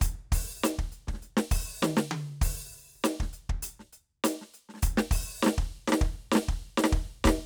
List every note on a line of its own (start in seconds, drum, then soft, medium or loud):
0.01 closed hi-hat loud
0.01 kick loud
0.01 snare soft
0.32 open hi-hat loud
0.32 kick loud
0.64 open hi-hat loud
0.64 snare loud
0.64 hi-hat pedal soft
0.79 kick medium
0.93 closed hi-hat soft
1.08 kick medium
1.08 snare soft
1.14 snare soft
1.18 snare soft
1.23 closed hi-hat soft
1.23 snare soft
1.37 snare loud
1.52 open hi-hat loud
1.52 kick loud
1.83 snare loud
1.83 hi-hat pedal medium
1.83 high tom loud
1.97 snare loud
2.12 high tom loud
2.42 open hi-hat loud
2.42 kick loud
2.96 kick soft
3.04 open hi-hat loud
3.04 snare loud
3.04 hi-hat pedal medium
3.21 kick medium
3.21 snare soft
3.33 closed hi-hat soft
3.50 kick loud
3.50 crash soft
3.63 closed hi-hat loud
3.80 snare soft
3.93 closed hi-hat medium
4.25 closed hi-hat loud
4.25 snare loud
4.42 snare soft
4.54 closed hi-hat soft
4.70 snare soft
4.75 snare soft
4.77 snare soft
4.83 closed hi-hat loud
4.83 kick loud
4.98 snare loud
5.12 open hi-hat loud
5.12 kick loud
5.43 snare loud
5.43 hi-hat pedal medium
5.47 snare loud
5.58 kick loud
5.88 snare loud
5.93 snare loud
6.02 kick loud
6.32 snare loud
6.36 snare loud
6.49 kick loud
6.78 snare loud
6.84 snare loud
6.93 kick loud
7.25 kick loud
7.25 snare loud
7.28 snare loud